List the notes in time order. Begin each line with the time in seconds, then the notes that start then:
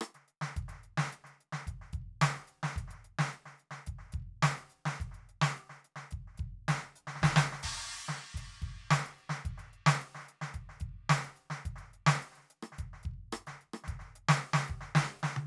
0.01 closed hi-hat, cross-stick
0.14 closed hi-hat, snare
0.28 closed hi-hat
0.41 snare
0.56 closed hi-hat, kick
0.62 kick
0.68 closed hi-hat, snare
0.72 snare
0.83 closed hi-hat
0.97 snare
1.12 closed hi-hat
1.24 closed hi-hat, snare
1.28 snare
1.40 closed hi-hat
1.52 snare
1.67 closed hi-hat, kick
1.81 snare
1.91 kick, snare, closed hi-hat
2.01 kick
2.21 closed hi-hat, snare
2.35 snare, open hi-hat
2.47 hi-hat pedal
2.63 snare
2.76 closed hi-hat, kick
2.81 kick
2.88 closed hi-hat, snare
2.93 snare
3.04 closed hi-hat
3.19 snare
3.33 closed hi-hat
3.45 snare
3.57 closed hi-hat, hi-hat pedal
3.71 snare
3.86 closed hi-hat, kick
3.98 snare
4.06 snare
4.09 closed hi-hat, snare
4.14 kick
4.20 kick
4.22 kick
4.42 closed hi-hat, snare
4.55 open hi-hat, snare
4.69 closed hi-hat, hi-hat pedal
4.85 snare
4.99 closed hi-hat, kick, snare
5.11 closed hi-hat, snare
5.16 snare
5.20 snare
5.29 closed hi-hat
5.41 snare
5.57 closed hi-hat
5.69 snare
5.84 closed hi-hat
5.96 snare
6.11 closed hi-hat, kick
6.27 snare
6.34 snare, closed hi-hat
6.39 kick
6.48 kick
6.68 closed hi-hat, snare
6.79 snare
6.95 hi-hat pedal, open hi-hat
7.07 snare
7.15 snare
7.22 kick, snare
7.36 snare
7.52 snare
7.59 hi-hat pedal, crash
7.64 kick
8.08 snare
8.34 closed hi-hat, kick
8.40 kick, snare
8.62 kick, closed hi-hat
8.70 kick
8.91 closed hi-hat, snare
9.01 snare
9.06 closed hi-hat
9.18 closed hi-hat
9.29 snare
9.45 closed hi-hat, kick
9.51 kick
9.58 closed hi-hat, snare
9.64 snare
9.73 closed hi-hat
9.86 snare
9.94 snare
10.01 closed hi-hat
10.15 snare
10.19 snare
10.28 closed hi-hat
10.41 snare
10.54 closed hi-hat, kick
10.69 snare
10.75 snare
10.80 closed hi-hat, kick
10.89 kick
11.09 closed hi-hat, snare
11.20 open hi-hat, snare
11.36 closed hi-hat, hi-hat pedal
11.50 snare
11.63 closed hi-hat, kick, snare
11.70 kick
11.76 closed hi-hat, snare
11.81 snare
11.86 snare
11.93 closed hi-hat
12.06 snare
12.15 snare
12.22 closed hi-hat
12.32 closed hi-hat, snare
12.37 snare
12.48 closed hi-hat, hi-hat pedal
12.63 cross-stick
12.72 snare
12.78 closed hi-hat, kick
12.93 snare
12.99 snare
13.03 closed hi-hat, kick
13.11 kick
13.13 kick
13.32 closed hi-hat, cross-stick
13.47 snare, closed hi-hat
13.61 closed hi-hat
13.73 cross-stick
13.84 kick, snare
13.88 closed hi-hat
13.99 closed hi-hat, snare
14.05 snare
14.15 closed hi-hat
14.28 snare
14.43 closed hi-hat
14.53 snare
14.58 snare
14.65 closed hi-hat, hi-hat pedal
14.69 kick
14.75 kick
14.81 snare
14.94 snare, high tom
15.19 hi-hat pedal
15.23 snare
15.36 open hi-hat, high tom